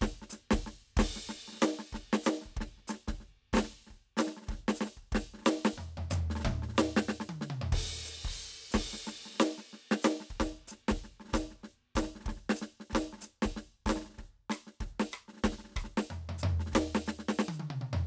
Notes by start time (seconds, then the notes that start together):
0.01 kick, snare
0.22 snare
0.29 snare, hi-hat pedal
0.51 kick, snare
0.66 snare
0.97 kick, snare, hi-hat pedal, ride
1.16 snare
1.29 snare
1.48 snare
1.52 snare
1.55 snare
1.61 snare, hi-hat pedal
1.66 snare
1.79 snare
1.92 kick, snare
2.13 snare
2.23 snare, hi-hat pedal
2.41 snare
2.45 kick, snare
2.56 kick
2.60 snare
2.78 snare
2.87 snare, hi-hat pedal
2.93 snare
3.07 kick, snare
3.20 snare
3.53 kick, snare, hi-hat pedal
3.57 snare
3.69 snare
3.71 snare
3.86 kick, snare
3.90 snare
3.92 snare
4.17 snare, hi-hat pedal
4.19 snare
4.27 snare
4.30 snare
4.36 snare
4.42 snare
4.46 kick, snare
4.49 snare
4.52 snare
4.68 snare
4.75 hi-hat pedal
4.81 snare
4.85 snare
4.97 kick
5.12 kick, snare
5.33 snare
5.38 snare
5.41 snare, hi-hat pedal
5.46 snare
5.65 snare
5.72 kick
5.77 floor tom
5.97 floor tom
6.10 floor tom, hi-hat pedal
6.30 snare
6.35 snare
6.40 snare
6.44 kick, floor tom
6.62 snare
6.68 snare
6.74 snare, hi-hat pedal
6.78 snare
6.96 snare
7.04 kick
7.08 snare
7.20 snare
7.29 high tom
7.41 snare
7.50 mid tom
7.61 floor tom
7.72 kick, ride
8.05 hi-hat pedal
8.24 kick, crash
8.71 kick, snare, hi-hat pedal, ride
8.93 snare
9.07 snare
9.25 snare
9.30 snare
9.34 snare
9.37 snare, hi-hat pedal
9.40 snare
9.58 snare
9.73 snare
9.91 snare
10.02 snare, hi-hat pedal
10.20 snare
10.30 kick
10.40 kick, snare
10.67 snare, hi-hat pedal
10.88 kick, snare
11.04 snare
11.20 snare
11.24 snare
11.28 snare
11.32 kick, snare
11.34 snare, hi-hat pedal
11.50 snare
11.63 snare
11.95 kick, snare, hi-hat pedal
12.03 snare
12.15 snare
12.20 snare
12.23 kick, snare
12.28 snare
12.36 snare
12.49 snare
12.55 hi-hat pedal
12.61 snare
12.80 snare
12.93 kick, snare
12.95 snare
13.12 snare
13.17 snare
13.20 snare, hi-hat pedal
13.22 snare
13.42 kick, snare
13.56 snare
13.86 kick, snare, hi-hat pedal
13.89 snare
13.96 snare
14.00 snare
14.05 snare
14.09 snare
14.13 snare
14.18 kick, snare
14.50 cross-stick, snare, hi-hat pedal
14.67 snare
14.80 kick, snare
14.99 snare
15.12 cross-stick, hi-hat pedal
15.28 snare
15.33 snare
15.37 snare
15.44 kick, snare
15.52 snare
15.58 snare
15.64 snare
15.68 snare
15.71 snare
15.74 kick, cross-stick, snare, hi-hat pedal
15.84 snare
15.97 snare
16.10 floor tom
16.29 floor tom
16.38 hi-hat pedal
16.43 floor tom
16.59 snare
16.66 snare
16.71 kick, snare
16.75 snare
16.94 snare
17.06 snare, hi-hat pedal
17.19 snare
17.28 snare
17.39 snare
17.48 high tom
17.52 hi-hat pedal
17.59 high tom
17.70 mid tom
17.81 mid tom
17.93 floor tom